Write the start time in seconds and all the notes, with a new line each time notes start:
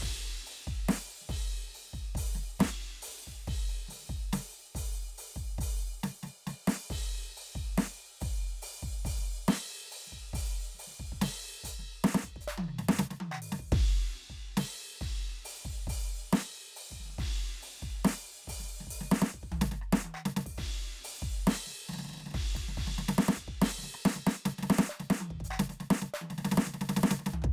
0.01 kick, ride
0.47 open hi-hat
0.68 kick, open hi-hat
0.89 open hi-hat, snare
1.09 open hi-hat
1.22 snare
1.26 snare
1.30 kick, snare, crash
1.75 open hi-hat
1.94 kick, open hi-hat
2.16 open hi-hat, kick
2.36 snare, open hi-hat
2.60 kick, snare, ride
2.83 open hi-hat
3.03 open hi-hat
3.09 kick
3.24 kick, open hi-hat
3.48 kick, crash
3.69 open hi-hat
3.89 open hi-hat, snare
3.96 snare
4.01 snare
4.04 snare
4.07 kick, snare
4.12 open hi-hat
4.34 open hi-hat, snare
4.53 open hi-hat
4.76 open hi-hat, kick
4.96 open hi-hat
5.19 open hi-hat
5.37 kick, open hi-hat
5.59 open hi-hat, kick
5.83 open hi-hat
6.04 open hi-hat, snare
6.24 open hi-hat, snare
6.48 open hi-hat, snare
6.68 open hi-hat, snare
6.91 kick, crash
7.37 open hi-hat
7.56 kick, open hi-hat
7.79 open hi-hat, snare
7.98 open hi-hat
8.21 open hi-hat, kick, snare
8.43 open hi-hat
8.63 open hi-hat
8.83 kick, open hi-hat
9.06 open hi-hat, kick
9.19 snare
9.23 snare
9.28 open hi-hat
9.49 snare, crash
9.69 open hi-hat
9.92 open hi-hat
10.08 snare
10.13 kick, open hi-hat
10.34 open hi-hat, kick
10.57 open hi-hat
10.75 snare
10.80 open hi-hat
10.88 snare
11.00 kick
11.13 kick
11.17 kick
11.22 snare, crash
11.64 open hi-hat, kick
11.70 hi-hat pedal
11.80 snare
12.05 snare
12.15 snare
12.24 kick
12.37 kick
12.42 hi-hat pedal
12.49 percussion
12.59 high tom
12.69 cross-stick
12.79 snare
12.89 snare
13.00 snare
13.11 snare
13.21 high tom
13.32 percussion
13.43 open hi-hat
13.53 snare
13.60 kick
13.73 kick, ride
14.31 kick
14.58 snare, crash
15.02 kick, ride
15.46 open hi-hat
15.66 kick, open hi-hat
15.88 open hi-hat, kick
16.10 open hi-hat
16.34 snare, crash
16.56 open hi-hat
16.77 open hi-hat
16.91 kick, snare
17.01 snare
17.06 snare
17.10 snare
17.17 kick, snare, ride
17.63 open hi-hat
17.83 kick, open hi-hat
18.06 open hi-hat, snare
18.25 kick, open hi-hat
18.45 kick, snare
18.49 open hi-hat
18.60 snare
18.65 kick
18.70 open hi-hat
18.81 snare
18.88 kick, open hi-hat
19.01 snare
19.12 snare
19.35 kick
19.44 kick
19.53 floor tom
19.58 hi-hat pedal
19.62 snare
19.82 cross-stick
19.93 snare
20.05 high tom
20.15 percussion
20.26 snare
20.37 snare
20.47 kick, open hi-hat
20.59 kick, ride
21.05 open hi-hat
21.23 kick
21.48 snare, crash
21.67 snare
21.90 kick, snare
21.94 snare
21.99 snare
22.05 snare
22.10 kick, snare
22.14 snare
22.18 snare
22.21 snare
22.27 snare
22.31 kick, snare, ride
22.56 kick, ride bell
22.69 snare
22.78 kick, ride
22.88 snare
22.99 kick, snare
23.09 snare
23.19 snare
23.37 kick
23.49 kick
23.63 snare, crash
23.79 snare
23.84 snare
23.95 cross-stick
24.06 snare
24.16 snare
24.28 snare, hi-hat pedal
24.46 snare
24.59 snare
24.64 snare
24.71 snare
24.78 snare, hi-hat pedal
24.90 percussion
25.01 snare
25.11 snare, hi-hat pedal
25.21 high tom
25.31 kick
25.41 kick, hi-hat pedal
25.51 percussion
25.60 snare
25.71 hi-hat pedal
25.81 snare
25.91 snare
26.03 snare
26.15 percussion
26.22 high tom
26.31 snare
26.39 snare
26.46 snare
26.52 snare
26.58 snare
26.68 snare
26.75 snare
26.82 snare
26.90 snare
26.97 snare
27.04 snare
27.12 snare
27.20 snare
27.27 snare
27.34 floor tom
27.43 kick, floor tom